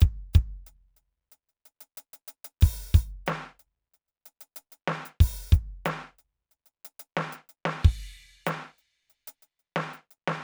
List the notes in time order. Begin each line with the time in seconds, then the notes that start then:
0.00 closed hi-hat, kick
0.33 kick, closed hi-hat, hi-hat pedal
0.66 closed hi-hat
0.96 closed hi-hat
1.32 closed hi-hat
1.49 closed hi-hat
1.65 closed hi-hat
1.81 closed hi-hat
1.97 closed hi-hat
2.13 closed hi-hat
2.28 closed hi-hat
2.44 closed hi-hat
2.61 open hi-hat, kick
2.93 kick, hi-hat pedal, open hi-hat
3.26 closed hi-hat, snare
3.59 closed hi-hat
3.94 closed hi-hat
4.08 closed hi-hat
4.26 closed hi-hat
4.41 closed hi-hat
4.56 closed hi-hat
4.72 closed hi-hat
4.88 snare
5.05 closed hi-hat
5.20 kick, open hi-hat
5.52 kick, closed hi-hat, hi-hat pedal
5.85 closed hi-hat, snare
6.18 closed hi-hat
6.51 closed hi-hat
6.66 closed hi-hat
6.85 closed hi-hat
6.99 closed hi-hat
7.17 snare
7.32 closed hi-hat
7.49 closed hi-hat
7.65 snare
7.81 kick, crash
8.46 closed hi-hat, snare
8.78 closed hi-hat
9.10 closed hi-hat
9.27 closed hi-hat
9.42 closed hi-hat
9.59 closed hi-hat
9.76 snare
9.93 closed hi-hat
10.11 closed hi-hat
10.28 snare